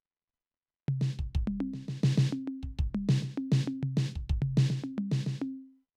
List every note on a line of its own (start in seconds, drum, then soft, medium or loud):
0.88 floor tom loud
1.01 snare medium
1.19 kick soft
1.35 kick medium
1.47 mid tom loud
1.60 high tom loud
1.74 snare soft
1.88 snare medium
2.03 snare loud
2.18 snare loud
2.32 high tom loud
2.47 high tom loud
2.63 kick soft
2.79 kick medium
2.94 mid tom loud
3.09 snare loud
3.22 snare medium
3.37 high tom loud
3.52 snare loud
3.67 high tom loud
3.83 floor tom loud
3.97 snare loud
4.15 kick soft
4.29 kick medium
4.42 floor tom loud
4.57 snare loud
4.70 snare medium
4.84 high tom loud
4.98 mid tom loud
5.12 snare loud
5.26 snare medium
5.41 high tom loud